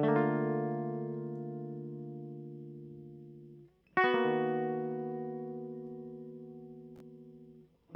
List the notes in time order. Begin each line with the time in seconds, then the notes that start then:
0.00 D3 A3
0.09 A#3
0.16 F4
3.98 F#4
4.04 B3
4.15 A#3
4.26 D#3